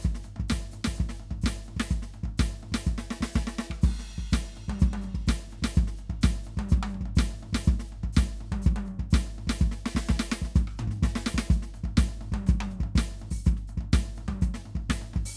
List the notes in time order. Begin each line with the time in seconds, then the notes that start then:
0.01 kick, floor tom, hi-hat pedal
0.15 snare
0.23 floor tom, hi-hat pedal
0.36 kick, floor tom
0.49 kick, snare, hi-hat pedal
0.62 floor tom
0.71 floor tom, hi-hat pedal
0.84 kick, snare
0.94 floor tom, hi-hat pedal
1.00 kick
1.09 snare
1.15 hi-hat pedal
1.20 floor tom
1.31 kick, floor tom
1.42 kick, hi-hat pedal
1.46 snare
1.56 floor tom
1.63 hi-hat pedal
1.68 floor tom
1.76 kick, snare
1.90 kick, hi-hat pedal
1.94 floor tom
2.02 snare
2.12 floor tom, hi-hat pedal
2.23 kick, floor tom
2.38 kick, snare, hi-hat pedal
2.51 floor tom
2.59 floor tom, hi-hat pedal
2.72 kick, snare
2.85 kick, floor tom, hi-hat pedal
2.98 snare
3.06 hi-hat pedal
3.10 snare
3.21 kick, snare
3.32 kick, snare, hi-hat pedal
3.47 snare
3.55 snare, hi-hat pedal
3.70 kick, cross-stick
3.82 kick, hi-hat pedal, crash
3.99 snare
4.05 hi-hat pedal
4.09 floor tom
4.18 kick
4.32 kick, snare, hi-hat pedal
4.45 floor tom
4.55 floor tom, hi-hat pedal
4.68 kick, high tom
4.79 kick, floor tom, hi-hat pedal
4.93 high tom
5.01 floor tom, hi-hat pedal
5.15 kick, floor tom
5.27 kick, snare, hi-hat pedal
5.41 floor tom
5.50 floor tom, hi-hat pedal
5.62 kick, snare
5.74 kick, floor tom, hi-hat pedal
5.87 snare
5.96 floor tom, hi-hat pedal
6.10 kick, floor tom
6.21 kick, snare, hi-hat pedal
6.35 floor tom
6.43 floor tom, hi-hat pedal
6.57 kick, high tom
6.69 kick, hi-hat pedal
6.73 floor tom
6.83 high tom
6.89 hi-hat pedal
6.94 floor tom
7.01 kick
7.05 floor tom
7.15 kick, snare, hi-hat pedal
7.30 floor tom
7.38 hi-hat pedal
7.43 floor tom
7.53 kick, snare
7.64 kick, hi-hat pedal
7.69 floor tom
7.79 snare
7.87 hi-hat pedal
7.92 floor tom
8.03 kick, floor tom
8.13 hi-hat pedal
8.17 kick, snare
8.28 floor tom
8.36 hi-hat pedal
8.40 floor tom
8.52 kick, high tom
8.62 hi-hat pedal
8.66 kick
8.76 high tom
8.85 floor tom, hi-hat pedal
8.99 kick, floor tom
9.10 kick, snare, hi-hat pedal
9.26 floor tom
9.34 hi-hat pedal
9.38 floor tom
9.47 kick, snare
9.58 kick, hi-hat pedal
9.62 floor tom
9.71 snare
9.79 hi-hat pedal
9.86 snare
9.95 kick, snare
10.05 snare, hi-hat pedal
10.10 kick
10.19 snare
10.29 snare, hi-hat pedal
10.42 kick, snare
10.55 kick, floor tom, hi-hat pedal
10.67 cross-stick
10.77 floor tom, hi-hat pedal
10.87 kick, snare
11.03 kick, snare, hi-hat pedal
11.15 snare
11.25 snare, hi-hat pedal
11.34 kick, snare
11.50 kick, floor tom, hi-hat pedal
11.62 snare
11.74 floor tom, hi-hat pedal
11.84 kick, floor tom
11.97 kick, snare, hi-hat pedal
12.09 floor tom
12.21 floor tom, hi-hat pedal
12.32 kick, high tom
12.46 kick, floor tom, hi-hat pedal
12.60 high tom
12.70 floor tom, hi-hat pedal
12.80 kick, floor tom
12.95 kick, snare, hi-hat pedal
13.11 floor tom
13.18 floor tom, hi-hat pedal
13.31 open hi-hat, kick
13.45 kick, floor tom, hi-hat pedal
13.56 snare
13.67 floor tom, hi-hat pedal
13.77 kick, floor tom
13.93 kick, snare, hi-hat pedal
14.05 floor tom
14.15 floor tom, hi-hat pedal
14.28 kick, high tom
14.41 kick, floor tom, hi-hat pedal
14.54 snare
14.63 floor tom, hi-hat pedal
14.75 kick, floor tom
14.90 kick, snare, hi-hat pedal
15.01 floor tom
15.13 kick, floor tom, hi-hat pedal
15.25 open hi-hat